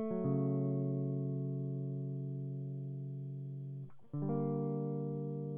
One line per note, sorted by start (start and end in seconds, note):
0.00 3.59 A3
0.12 3.91 F#3
0.26 3.88 C#3
4.15 5.58 D3
4.23 5.58 G3
4.29 5.58 A#3